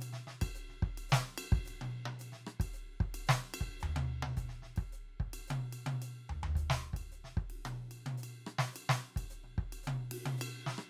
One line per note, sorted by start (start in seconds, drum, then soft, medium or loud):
0.01 hi-hat pedal medium
0.01 ride bell medium
0.13 snare soft
0.28 snare medium
0.42 kick medium
0.42 ride bell loud
0.55 hi-hat pedal medium
0.70 snare soft
0.83 kick medium
0.98 ride bell medium
1.10 snare loud
1.10 hi-hat pedal medium
1.38 ride bell loud
1.53 kick loud
1.65 hi-hat pedal medium
1.65 ride bell medium
1.82 high tom loud
2.06 high tom loud
2.20 hi-hat pedal medium
2.20 ride bell medium
2.33 snare soft
2.47 cross-stick medium
2.60 kick medium
2.60 ride bell medium
2.74 hi-hat pedal medium
3.01 kick medium
3.15 ride bell medium
3.27 snare loud
3.27 hi-hat pedal medium
3.54 ride bell loud
3.61 kick medium
3.81 floor tom loud
3.81 hi-hat pedal medium
3.97 high tom loud
4.23 high tom loud
4.37 kick medium
4.37 hi-hat pedal medium
4.37 ride bell soft
4.49 snare soft
4.63 snare soft
4.77 kick medium
4.77 ride bell soft
4.93 hi-hat pedal medium
5.08 snare soft
5.20 kick medium
5.34 ride bell medium
5.48 hi-hat pedal medium
5.48 high tom loud
5.73 ride bell medium
5.87 high tom loud
6.02 hi-hat pedal medium
6.02 ride bell medium
6.30 floor tom medium
6.44 floor tom loud
6.56 kick medium
6.56 snare soft
6.56 hi-hat pedal medium
6.56 ride soft
6.56 floor tom soft
6.70 snare loud
6.94 kick medium
6.94 ride bell medium
7.12 hi-hat pedal medium
7.25 snare soft
7.37 kick medium
7.50 ride medium
7.65 hi-hat pedal medium
7.65 high tom loud
7.92 ride bell medium
8.07 high tom loud
8.18 hi-hat pedal medium
8.24 ride bell medium
8.47 cross-stick medium
8.59 snare medium
8.73 hi-hat pedal medium
8.73 ride bell medium
8.90 snare loud
9.17 kick medium
9.17 ride bell medium
9.31 hi-hat pedal medium
9.44 high tom soft
9.58 kick medium
9.73 ride bell medium
9.84 hi-hat pedal medium
9.84 high tom loud
10.12 ride loud
10.26 high tom loud
10.38 hi-hat pedal medium
10.38 ride bell loud
10.67 snare medium
10.79 cross-stick medium